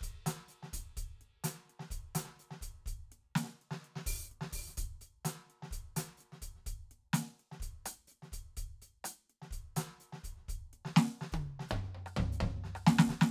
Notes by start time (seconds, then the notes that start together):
0.01 closed hi-hat, kick
0.09 kick
0.26 closed hi-hat, snare
0.48 closed hi-hat, hi-hat pedal
0.63 snare
0.73 closed hi-hat, kick
0.97 closed hi-hat, kick
1.03 kick
1.21 closed hi-hat
1.44 closed hi-hat, snare
1.70 closed hi-hat
1.80 snare
1.90 closed hi-hat, kick
2.15 closed hi-hat, snare
2.25 snare
2.39 hi-hat pedal
2.51 snare
2.61 closed hi-hat, kick
2.86 closed hi-hat, kick
3.12 closed hi-hat
3.36 closed hi-hat, snare
3.44 snare
3.62 closed hi-hat
3.71 snare
3.84 closed hi-hat
3.96 snare
4.06 open hi-hat, kick, snare
4.13 kick
4.18 kick
4.25 hi-hat pedal
4.31 closed hi-hat
4.41 snare
4.53 open hi-hat, kick
4.68 snare, hi-hat pedal
4.77 closed hi-hat, kick
4.84 kick
5.01 closed hi-hat
5.25 closed hi-hat, snare
5.50 closed hi-hat
5.62 snare
5.71 closed hi-hat, kick
5.97 closed hi-hat, snare
6.17 closed hi-hat, hi-hat pedal
6.32 snare
6.42 closed hi-hat, kick
6.56 snare
6.61 snare
6.65 closed hi-hat, kick, snare
6.91 closed hi-hat
7.13 closed hi-hat, snare
7.40 closed hi-hat
7.52 snare
7.60 closed hi-hat, kick
7.86 closed hi-hat, cross-stick
8.07 hi-hat pedal
8.12 closed hi-hat
8.22 snare
8.32 closed hi-hat, kick
8.57 closed hi-hat, kick
8.63 kick
8.82 closed hi-hat
9.04 closed hi-hat, cross-stick
9.30 closed hi-hat
9.42 snare
9.51 closed hi-hat, kick
9.76 closed hi-hat, snare
10.00 closed hi-hat, hi-hat pedal
10.13 snare
10.24 closed hi-hat, kick
10.37 snare
10.43 snare
10.49 closed hi-hat, kick
10.55 kick
10.73 closed hi-hat
10.85 snare
10.96 snare
11.21 snare
11.32 kick, hi-hat pedal, high tom
11.39 kick
11.60 snare
11.69 kick, hi-hat pedal, mid tom
11.78 kick
11.83 snare
11.95 mid tom
12.06 cross-stick
12.17 kick, floor tom
12.33 hi-hat pedal
12.41 kick, floor tom
12.47 kick, snare
12.64 snare
12.75 cross-stick
12.87 snare
12.99 snare
13.07 kick, snare
13.21 snare